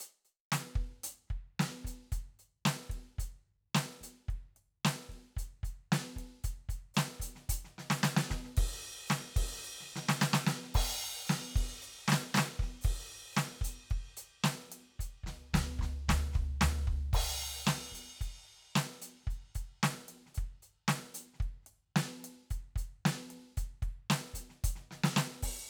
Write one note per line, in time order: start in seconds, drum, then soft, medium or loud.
0.03 closed hi-hat medium
0.25 closed hi-hat soft
0.52 closed hi-hat medium
0.52 snare loud
0.75 kick medium
1.04 closed hi-hat loud
1.27 kick soft
1.27 snare soft
1.27 closed hi-hat soft
1.59 snare loud
1.84 closed hi-hat medium
1.84 kick soft
2.12 closed hi-hat medium
2.12 kick soft
2.39 closed hi-hat soft
2.65 snare loud
2.90 kick soft
2.90 closed hi-hat soft
3.18 closed hi-hat medium
3.18 kick soft
3.75 snare loud
4.01 closed hi-hat medium
4.01 kick soft
4.28 kick soft
4.28 closed hi-hat soft
4.55 kick soft
4.55 closed hi-hat soft
4.85 snare loud
5.09 kick soft
5.09 closed hi-hat soft
5.37 closed hi-hat medium
5.37 kick soft
5.63 closed hi-hat soft
5.63 kick soft
5.92 snare loud
6.16 kick soft
6.16 closed hi-hat soft
6.44 closed hi-hat medium
6.44 kick soft
6.69 closed hi-hat medium
6.69 kick soft
6.94 snare loud
6.94 hi-hat pedal medium
7.20 closed hi-hat medium
7.20 kick soft
7.35 snare soft
7.49 closed hi-hat loud
7.49 kick soft
7.65 snare soft
7.78 snare medium
7.90 snare loud
8.03 snare loud
8.03 hi-hat pedal medium
8.17 snare loud
8.30 kick soft
8.30 snare medium
8.44 snare soft
8.57 kick medium
8.57 crash medium
8.76 snare soft
8.76 open hi-hat soft
9.07 snare loud
9.07 hi-hat pedal medium
9.36 kick medium
9.36 crash medium
9.56 snare soft
9.64 hi-hat pedal medium
9.80 snare soft
9.96 snare medium
10.09 snare loud
10.20 snare loud
10.20 hi-hat pedal medium
10.33 snare loud
10.47 snare loud
10.63 snare soft
10.74 kick medium
10.74 hi-hat pedal soft
10.74 crash loud
11.26 snare loud
11.26 hi-hat pedal medium
11.56 kick medium
11.56 crash medium
11.82 hi-hat pedal medium
12.08 snare loud
12.12 snare loud
12.34 snare loud
12.34 hi-hat pedal medium
12.37 snare loud
12.59 kick medium
12.59 snare soft
12.81 kick medium
12.81 hi-hat pedal medium
12.81 crash medium
13.10 closed hi-hat soft
13.33 hi-hat pedal soft
13.37 snare loud
13.61 closed hi-hat medium
13.61 kick soft
13.90 kick medium
13.90 closed hi-hat soft
14.17 closed hi-hat medium
14.44 snare loud
14.72 closed hi-hat medium
14.93 snare soft
14.99 closed hi-hat medium
14.99 kick soft
15.24 kick soft
15.24 snare medium
15.28 floor tom soft
15.54 kick soft
15.54 snare loud
15.54 floor tom medium
15.79 kick soft
15.79 snare medium
15.79 floor tom medium
16.08 kick soft
16.08 snare loud
16.08 floor tom loud
16.33 kick medium
16.33 snare soft
16.33 floor tom soft
16.61 snare loud
16.61 floor tom loud
16.61 hi-hat pedal medium
16.87 kick medium
16.87 floor tom soft
17.13 kick medium
17.13 crash loud
17.37 closed hi-hat soft
17.67 snare loud
17.92 closed hi-hat medium
17.92 kick soft
18.21 closed hi-hat medium
18.21 kick soft
18.45 closed hi-hat soft
18.75 snare loud
19.02 closed hi-hat medium
19.21 snare soft
19.27 closed hi-hat soft
19.27 kick soft
19.55 closed hi-hat medium
19.55 kick soft
19.83 snare loud
20.08 closed hi-hat medium
20.26 snare soft
20.34 closed hi-hat medium
20.34 kick soft
20.62 closed hi-hat soft
20.88 snare loud
21.14 closed hi-hat medium
21.34 snare soft
21.40 kick medium
21.40 closed hi-hat soft
21.63 snare soft
21.63 closed hi-hat soft
21.96 snare loud
22.24 closed hi-hat medium
22.50 closed hi-hat medium
22.50 kick soft
22.76 closed hi-hat medium
22.76 kick soft
23.05 snare loud
23.30 closed hi-hat soft
23.57 closed hi-hat medium
23.57 kick soft
23.82 kick soft
23.82 closed hi-hat soft
24.10 snare loud
24.34 closed hi-hat medium
24.34 kick soft
24.50 snare soft
24.64 closed hi-hat loud
24.64 kick medium
24.76 snare soft
24.91 snare medium
25.04 snare loud
25.16 snare loud
25.31 snare soft
25.43 open hi-hat loud
25.43 kick soft